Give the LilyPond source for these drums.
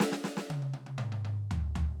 \new DrumStaff \drummode { \time 4/4 \tempo 4 = 120 sn16 sn16 sn16 sn16 tommh16 tommh16 tommh16 tommh16 toml16 toml16 toml8 tomfh8 tomfh8 | }